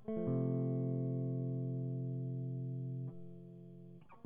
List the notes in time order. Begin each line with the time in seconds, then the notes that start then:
0.09 A3
0.18 F3
0.29 C3